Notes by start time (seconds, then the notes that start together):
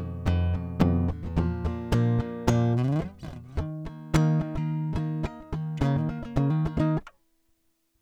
0.00 F2 B2
0.28 F2 B2
0.56 F2 B2
0.82 F2 B2
1.11 E2
1.27 E2
1.39 A#2 F3 A#3
1.67 A#2 F3 A#3
1.94 A#2 F3 A#3
2.22 A#2 F3
2.50 A#2 F3 A#3
3.61 D#3
3.88 D#3
4.16 D#3 A#3 D#4
4.42 D#3 A#3
4.58 D#3 A#3
4.95 D#3 A#3
5.26 A#3 D#4
5.54 D#3 A#3 D#4
5.83 C#3 A#3 D#4
5.99 D#3
6.11 A#3
6.25 A#3
6.38 C#3 A#3
6.53 D#3
6.67 D#3 A#3
6.79 D#3 A#3